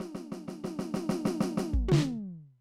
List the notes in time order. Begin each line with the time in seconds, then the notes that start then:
0.00 snare, floor tom
0.15 snare, floor tom
0.31 snare, floor tom
0.47 snare, floor tom
0.63 snare, floor tom
0.79 snare, floor tom
0.94 snare, floor tom
1.09 snare, floor tom
1.25 snare, floor tom
1.40 snare, floor tom
1.57 snare, floor tom, hi-hat pedal
1.73 kick
1.88 snare, floor tom